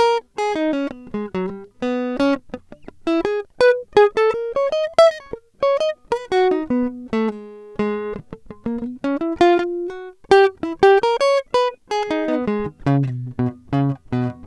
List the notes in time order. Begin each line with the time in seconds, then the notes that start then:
0.01 A#4
0.40 G#4
0.57 D#4
0.75 C#4
0.89 B3
1.16 G#3
1.36 F#3
1.49 G3
1.84 B3
2.22 C#4
3.08 E4
3.26 G#4
3.62 B4
3.98 G#4
4.19 A4
4.32 A#4
4.58 C#5
4.74 D#5
5.00 E5
5.09 D#5
5.20 C#5
5.64 C#5
5.79 D#5
6.13 B4
6.33 F#4
6.53 D#4
6.72 B3
7.14 A3
7.30 G#3
7.81 G#3
8.52 G#3
8.68 A#3
8.80 A#3
9.06 C#4
9.23 E4
9.43 F4
9.61 F4
9.89 F#4
10.33 G4
10.65 E4
10.84 G4
11.05 A#4
11.22 C#5
11.56 B4
11.93 G#4
12.12 D#4
12.30 B3
12.49 G#3
12.88 C#3
13.05 B2
13.41 B2
13.74 C#3
14.14 B2